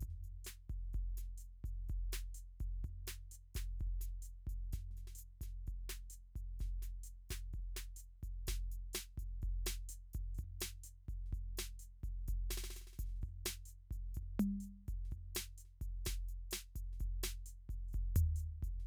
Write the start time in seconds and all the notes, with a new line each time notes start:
0.01 closed hi-hat, kick
0.10 snare
0.24 closed hi-hat
0.45 closed hi-hat, snare, hi-hat pedal
0.70 closed hi-hat, kick
0.94 closed hi-hat, kick
1.00 kick
1.18 closed hi-hat, snare
1.38 hi-hat pedal
1.43 closed hi-hat
1.65 closed hi-hat, kick
1.89 closed hi-hat, kick
2.13 closed hi-hat, snare
2.35 closed hi-hat, hi-hat pedal
2.60 closed hi-hat, kick
2.84 closed hi-hat, kick
2.90 kick
3.07 closed hi-hat, snare
3.32 hi-hat pedal
3.55 closed hi-hat, kick, snare
3.80 closed hi-hat, kick
3.87 kick
4.01 closed hi-hat, snare
4.23 hi-hat pedal
4.27 closed hi-hat
4.47 closed hi-hat, kick
4.53 kick
4.73 closed hi-hat, kick, snare
4.80 kick
4.91 snare, mid tom
4.97 closed hi-hat, snare
5.07 snare
5.15 closed hi-hat, hi-hat pedal
5.41 closed hi-hat, kick, snare
5.67 closed hi-hat, kick
5.89 closed hi-hat, snare
6.10 closed hi-hat, hi-hat pedal
6.36 closed hi-hat, kick
6.60 closed hi-hat, kick, snare
6.66 kick
6.83 closed hi-hat, snare
7.04 closed hi-hat, hi-hat pedal
7.30 closed hi-hat, kick, snare
7.53 closed hi-hat, kick
7.60 kick
7.77 closed hi-hat, snare
7.97 hi-hat pedal
8.01 closed hi-hat
8.23 closed hi-hat, kick
8.47 closed hi-hat, kick, snare
8.54 kick
8.72 closed hi-hat
8.94 closed hi-hat, snare, hi-hat pedal
9.18 closed hi-hat, kick
9.23 kick
9.42 closed hi-hat, kick
9.49 kick
9.66 closed hi-hat, snare
9.89 closed hi-hat, hi-hat pedal
10.14 closed hi-hat, kick
10.21 kick
10.35 closed hi-hat, hi-hat pedal
10.39 kick
10.45 kick
10.61 closed hi-hat, snare
10.84 closed hi-hat, hi-hat pedal
11.09 closed hi-hat, kick
11.26 snare
11.33 closed hi-hat, kick
11.58 closed hi-hat, snare
11.80 closed hi-hat, hi-hat pedal
12.04 closed hi-hat, kick
12.09 kick
12.28 closed hi-hat, kick
12.34 kick
12.51 closed hi-hat, snare
12.58 snare
12.64 snare
12.71 snare, hi-hat pedal
12.77 closed hi-hat, snare
12.82 snare
12.87 snare
12.93 snare
12.99 closed hi-hat, kick, snare
13.05 kick, snare
13.09 snare
13.16 snare
13.22 kick, open hi-hat
13.29 kick
13.46 closed hi-hat, snare
13.66 closed hi-hat, hi-hat pedal
13.91 kick, closed hi-hat
13.97 kick
14.15 kick, closed hi-hat
14.23 kick
14.40 closed hi-hat, mid tom
14.61 closed hi-hat, hi-hat pedal
14.88 kick, closed hi-hat
14.94 kick
15.05 snare
15.12 kick, closed hi-hat
15.18 kick
15.35 closed hi-hat, snare
15.58 hi-hat pedal
15.65 snare
15.82 closed hi-hat, kick
16.06 open hi-hat, kick, snare
16.13 kick
16.29 closed hi-hat
16.51 open hi-hat, snare, hi-hat pedal
16.76 closed hi-hat, kick
16.93 snare
17.00 closed hi-hat, kick
17.07 kick
17.23 closed hi-hat, snare
17.46 closed hi-hat, hi-hat pedal
17.70 closed hi-hat, kick
17.75 kick
17.89 hi-hat pedal
17.94 kick, closed hi-hat
18.16 closed hi-hat, floor tom
18.36 closed hi-hat, hi-hat pedal
18.63 kick, closed hi-hat
18.69 kick
18.80 snare